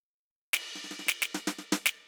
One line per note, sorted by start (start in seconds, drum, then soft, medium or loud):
0.53 snare loud
0.53 ride medium
0.75 snare soft
0.84 snare soft
0.91 snare soft
0.99 snare soft
1.06 snare soft
1.08 snare loud
1.22 snare medium
1.34 snare medium
1.47 snare medium
1.58 snare soft
1.72 snare loud
1.86 snare loud